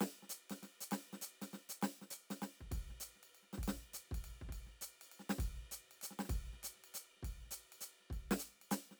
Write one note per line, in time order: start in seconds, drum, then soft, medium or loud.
0.01 snare medium
0.01 ride medium
0.23 snare soft
0.30 hi-hat pedal medium
0.30 ride soft
0.50 snare soft
0.50 ride medium
0.63 snare soft
0.63 ride soft
0.81 hi-hat pedal medium
0.91 snare medium
0.91 ride medium
1.13 snare soft
1.22 hi-hat pedal medium
1.22 ride soft
1.42 snare soft
1.42 hi-hat pedal soft
1.42 ride medium
1.53 snare soft
1.53 ride soft
1.69 hi-hat pedal medium
1.82 snare medium
1.82 ride soft
2.02 snare soft
2.11 hi-hat pedal medium
2.11 ride soft
2.31 snare soft
2.31 ride medium
2.42 snare soft
2.42 ride soft
2.61 kick soft
2.72 kick medium
2.72 ride medium
2.90 snare soft
3.00 hi-hat pedal medium
3.00 ride soft
3.16 snare soft
3.23 ride soft
3.35 ride soft
3.43 snare soft
3.53 snare soft
3.58 kick soft
3.63 ride medium
3.68 snare medium
3.94 hi-hat pedal medium
3.94 ride soft
4.12 kick soft
4.12 ride soft
4.24 ride soft
4.34 snare soft
4.42 kick soft
4.49 kick soft
4.49 ride soft
4.67 snare soft
4.82 hi-hat pedal medium
4.82 ride soft
5.01 hi-hat pedal soft
5.01 ride soft
5.12 ride soft
5.20 snare soft
5.30 snare medium
5.39 kick medium
5.39 ride medium
5.72 hi-hat pedal medium
5.72 ride soft
5.91 ride soft
6.02 hi-hat pedal medium
6.02 ride soft
6.11 snare soft
6.19 snare medium
6.24 snare soft
6.29 kick medium
6.29 ride medium
6.53 snare soft
6.63 hi-hat pedal medium
6.63 ride soft
6.76 snare soft
6.84 ride soft
6.94 hi-hat pedal medium
6.94 ride soft
7.17 snare soft
7.23 kick soft
7.23 ride medium
7.45 snare soft
7.51 hi-hat pedal medium
7.51 ride medium
7.72 ride soft
7.81 hi-hat pedal medium
7.81 ride soft
8.00 snare soft
8.10 kick soft
8.10 ride soft
8.31 snare medium
8.39 hi-hat pedal medium
8.39 ride soft
8.62 ride soft
8.71 snare medium
8.71 hi-hat pedal medium
8.71 ride soft
8.91 snare soft